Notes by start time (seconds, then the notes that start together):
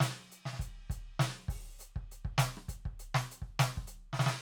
0.01 closed hi-hat, snare
0.32 closed hi-hat
0.46 snare
0.54 snare
0.60 closed hi-hat, kick
0.90 closed hi-hat, kick
1.20 closed hi-hat, snare
1.49 open hi-hat, kick
1.79 closed hi-hat, hi-hat pedal
1.97 kick
2.12 closed hi-hat
2.25 kick
2.39 closed hi-hat, snare
2.58 cross-stick
2.69 closed hi-hat, kick
2.86 kick
3.00 closed hi-hat
3.15 snare
3.32 closed hi-hat
3.42 kick
3.60 closed hi-hat, snare
3.78 kick
3.88 closed hi-hat
4.14 snare
4.20 snare
4.27 snare